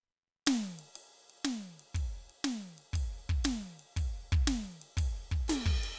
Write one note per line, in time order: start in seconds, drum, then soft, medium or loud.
0.47 snare loud
0.47 ride loud
0.79 ride medium
0.95 ride medium
1.30 ride soft
1.45 snare medium
1.45 ride medium
1.79 ride medium
1.94 kick medium
1.94 ride medium
2.30 ride soft
2.44 snare medium
2.44 ride loud
2.78 ride soft
2.93 kick medium
2.93 ride loud
3.29 kick medium
3.44 snare loud
3.44 ride loud
3.79 ride medium
3.96 kick medium
3.96 ride medium
4.32 kick medium
4.47 snare loud
4.47 ride loud
4.82 ride medium
4.97 kick medium
4.97 ride loud
5.31 kick medium
5.48 snare medium
5.48 ride medium
5.66 kick medium
5.83 ride medium